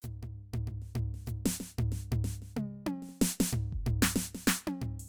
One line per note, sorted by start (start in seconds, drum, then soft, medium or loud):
0.02 hi-hat pedal medium
0.02 floor tom medium
0.23 floor tom medium
0.53 floor tom loud
0.67 floor tom medium
0.82 snare soft
0.95 floor tom loud
1.14 snare soft
1.26 hi-hat pedal medium
1.26 floor tom medium
1.46 snare loud
1.60 snare medium
1.78 floor tom loud
1.92 snare soft
2.12 floor tom loud
2.24 snare medium
2.42 snare soft
2.56 mid tom loud
2.86 high tom loud
3.02 snare soft
3.09 snare soft
3.21 snare loud
3.40 snare loud
3.53 floor tom loud
3.72 kick soft
3.86 floor tom loud
4.02 snare loud
4.16 snare loud
4.35 snare soft
4.47 snare loud
4.67 high tom loud
4.81 floor tom medium
4.99 crash medium